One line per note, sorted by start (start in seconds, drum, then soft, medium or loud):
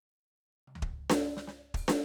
0.67 high tom soft
0.75 floor tom medium
0.82 kick medium
1.10 snare loud
1.37 snare medium
1.47 snare soft
1.74 open hi-hat medium
1.74 kick medium
1.88 snare loud
1.88 hi-hat pedal soft